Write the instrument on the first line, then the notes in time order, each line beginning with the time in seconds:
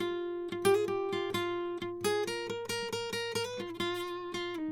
acoustic guitar
0.02 F4
0.54 F4
0.66 G4
0.76 G#4
0.90 G4
1.14 F4
1.35 F4
1.83 F4
2.06 G#4
2.29 A#4
2.51 A#4
2.71 A#4
2.94 A#4
3.15 A#4
3.37 A#4
3.46 B4
3.61 F4
3.81 F4
4.36 F4
4.56 D#4